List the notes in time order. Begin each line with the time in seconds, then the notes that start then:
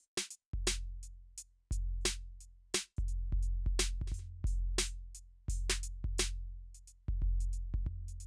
0.00 hi-hat pedal
0.17 snare
0.30 closed hi-hat
0.53 kick
0.67 closed hi-hat, snare
1.03 closed hi-hat
1.38 closed hi-hat
1.71 closed hi-hat, kick
2.01 hi-hat pedal
2.05 closed hi-hat, snare
2.41 closed hi-hat
2.74 closed hi-hat, snare
2.97 kick, hi-hat pedal
3.08 closed hi-hat
3.32 kick
3.43 closed hi-hat
3.66 kick
3.79 closed hi-hat, snare
4.01 kick
4.07 snare
4.12 open hi-hat, kick
4.19 snare
4.44 open hi-hat, kick, hi-hat pedal
4.78 open hi-hat, snare, hi-hat pedal
5.15 closed hi-hat
5.48 open hi-hat, kick
5.53 hi-hat pedal
5.70 snare
5.83 closed hi-hat
6.04 kick
6.18 closed hi-hat, snare
6.74 closed hi-hat
6.87 closed hi-hat
7.08 kick
7.22 kick
7.40 closed hi-hat
7.53 closed hi-hat
7.74 kick
7.86 kick
8.08 closed hi-hat
8.20 closed hi-hat